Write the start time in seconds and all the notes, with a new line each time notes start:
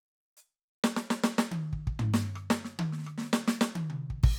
0.37 hi-hat pedal
0.84 snare
0.97 snare
1.10 snare
1.24 snare
1.38 snare
1.52 high tom
1.73 kick
1.87 kick
1.99 floor tom
2.14 snare
2.24 snare
2.36 cross-stick
2.50 snare
2.65 snare
2.79 high tom
2.92 snare
2.98 snare
3.02 snare
3.07 cross-stick
3.18 snare
3.21 snare
3.25 snare
3.33 snare
3.48 snare
3.61 snare
3.75 high tom
3.90 mid tom
4.10 kick
4.23 kick, crash